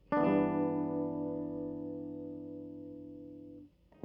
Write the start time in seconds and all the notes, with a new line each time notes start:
0.13 D4
0.17 E3 B3
0.29 G2